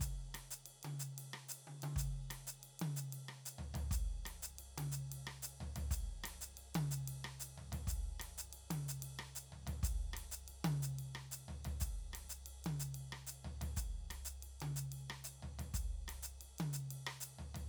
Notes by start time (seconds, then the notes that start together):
0.01 kick, hi-hat pedal, ride
0.35 cross-stick, ride
0.51 hi-hat pedal
0.66 ride
0.83 high tom, ride
1.00 hi-hat pedal
1.18 hi-hat pedal, ride
1.34 cross-stick
1.49 hi-hat pedal, ride
1.68 high tom
1.83 high tom, ride
1.96 kick, hi-hat pedal, ride
2.31 cross-stick, ride
2.47 hi-hat pedal
2.64 ride
2.80 high tom, ride
2.97 hi-hat pedal
3.13 ride
3.29 cross-stick
3.46 hi-hat pedal, ride
3.59 floor tom
3.74 floor tom, ride
3.91 kick, hi-hat pedal, ride
4.26 cross-stick, ride
4.43 hi-hat pedal
4.59 ride
4.78 high tom, ride
4.92 hi-hat pedal
5.12 ride
5.27 cross-stick
5.43 hi-hat pedal, ride
5.61 floor tom
5.76 floor tom, ride
5.91 kick, hi-hat pedal, ride
6.24 cross-stick, ride
6.41 hi-hat pedal
6.57 ride
6.75 high tom, ride
6.91 hi-hat pedal
7.08 ride
7.25 cross-stick
7.40 hi-hat pedal, ride
7.58 floor tom
7.73 floor tom, ride
7.87 kick, hi-hat pedal, ride
8.20 cross-stick, ride
8.38 hi-hat pedal
8.53 ride
8.71 high tom, ride
8.89 hi-hat pedal
9.03 ride
9.19 cross-stick
9.36 hi-hat pedal, ride
9.53 floor tom
9.67 floor tom, ride
9.83 kick, hi-hat pedal, ride
10.14 cross-stick, ride
10.32 hi-hat pedal
10.48 ride
10.65 high tom, ride
10.83 hi-hat pedal
10.99 ride
11.15 cross-stick
11.32 hi-hat pedal, ride
11.49 floor tom
11.65 floor tom, ride
11.81 kick, hi-hat pedal, ride
12.14 cross-stick, ride
12.30 hi-hat pedal
12.46 ride
12.65 high tom, ride
12.80 hi-hat pedal
12.95 ride
13.13 cross-stick
13.27 hi-hat pedal, ride
13.45 floor tom
13.62 floor tom, ride
13.77 kick, hi-hat pedal, ride
14.11 cross-stick, ride
14.25 hi-hat pedal
14.43 ride
14.61 high tom, ride
14.76 hi-hat pedal
14.92 ride
14.98 hi-hat pedal
15.10 cross-stick
15.24 hi-hat pedal, ride
15.43 floor tom
15.59 floor tom, ride
15.74 kick, hi-hat pedal, ride
16.08 cross-stick, ride
16.23 hi-hat pedal
16.41 ride
16.59 high tom, ride
16.73 hi-hat pedal
16.91 ride
17.07 cross-stick
17.21 hi-hat pedal, ride
17.39 floor tom
17.55 floor tom, ride